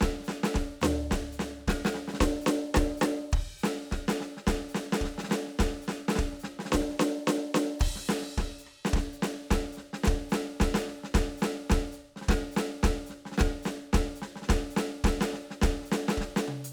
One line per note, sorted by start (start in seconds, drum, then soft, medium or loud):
0.01 kick loud
0.01 snare loud
0.20 snare soft
0.24 snare loud
0.24 hi-hat pedal medium
0.44 snare loud
0.54 kick loud
0.54 snare medium
0.81 snare loud
0.81 floor tom loud
0.81 hi-hat pedal medium
1.11 kick medium
1.11 snare loud
1.33 hi-hat pedal medium
1.40 snare loud
1.60 snare soft
1.68 kick medium
1.68 snare loud
1.85 snare loud
1.85 hi-hat pedal medium
1.95 snare medium
2.08 snare medium
2.14 snare medium
2.20 kick loud
2.20 snare soft
2.20 snare loud
2.29 snare soft
2.35 snare soft
2.40 snare soft
2.40 hi-hat pedal medium
2.45 snare soft
2.47 snare loud
2.53 cross-stick soft
2.66 snare soft
2.75 kick loud
2.75 snare loud
2.83 cross-stick soft
2.87 snare soft
2.90 snare soft
2.98 hi-hat pedal medium
3.02 snare loud
3.10 snare soft
3.15 snare soft
3.20 snare soft
3.24 snare soft
3.32 kick loud
3.32 crash medium
3.59 hi-hat pedal medium
3.64 snare loud
3.92 kick medium
3.92 snare medium
4.08 snare loud
4.08 hi-hat pedal medium
4.21 snare medium
4.37 snare soft
4.47 kick medium
4.47 snare loud
4.69 hi-hat pedal medium
4.75 snare loud
4.93 snare loud
5.01 kick medium
5.01 snare medium
5.18 snare medium
5.18 hi-hat pedal medium
5.24 snare medium
5.29 snare medium
5.31 snare loud
5.47 snare soft
5.59 kick loud
5.59 snare loud
5.72 snare soft
5.77 snare soft
5.82 hi-hat pedal medium
5.88 snare loud
6.09 snare loud
6.16 kick loud
6.16 snare medium
6.33 snare soft
6.40 hi-hat pedal medium
6.44 snare medium
6.59 snare medium
6.65 snare medium
6.71 kick medium
6.71 snare medium
6.71 snare loud
6.81 snare soft
6.85 snare soft
6.89 snare soft
6.92 snare soft
7.00 snare loud
7.09 snare soft
7.18 snare soft
7.28 snare loud
7.37 snare soft
7.43 snare soft
7.55 snare loud
7.64 snare soft
7.68 snare soft
7.69 snare soft
7.80 kick loud
7.80 crash loud
7.96 snare medium
8.05 snare loud
8.05 hi-hat pedal medium
8.22 snare soft
8.38 kick medium
8.38 snare medium
8.59 hi-hat pedal medium
8.67 cross-stick soft
8.85 snare loud
8.93 kick loud
8.93 snare medium
9.13 hi-hat pedal medium
9.23 snare loud
9.51 kick loud
9.51 snare loud
9.73 hi-hat pedal medium
9.78 snare soft
9.93 snare medium
10.04 kick loud
10.04 snare loud
10.30 snare loud
10.30 hi-hat pedal medium
10.60 kick loud
10.60 snare loud
10.75 snare loud
10.79 hi-hat pedal medium
10.88 snare soft
11.04 snare medium
11.14 kick loud
11.14 snare loud
11.38 hi-hat pedal medium
11.42 snare loud
11.70 kick loud
11.70 snare loud
11.93 hi-hat pedal medium
12.16 snare medium
12.22 snare medium
12.27 kick loud
12.27 snare soft
12.30 snare loud
12.52 hi-hat pedal medium
12.57 snare loud
12.83 kick loud
12.83 snare loud
13.07 snare soft
13.07 hi-hat pedal medium
13.26 snare medium
13.32 snare medium
13.38 kick loud
13.38 snare loud
13.63 snare loud
13.63 hi-hat pedal medium
13.93 kick loud
13.93 snare loud
14.16 hi-hat pedal medium
14.22 snare medium
14.36 snare medium
14.42 snare medium
14.48 kick loud
14.48 snare soft
14.48 snare loud
14.71 hi-hat pedal medium
14.77 snare loud
15.04 kick loud
15.04 snare loud
15.21 snare loud
15.21 hi-hat pedal medium
15.34 snare medium
15.51 snare medium
15.62 kick loud
15.62 snare loud
15.82 snare soft
15.86 hi-hat pedal medium
15.92 snare loud
16.09 snare loud
16.18 kick medium
16.18 snare medium
16.37 snare loud
16.37 hi-hat pedal medium
16.48 high tom medium
16.65 closed hi-hat medium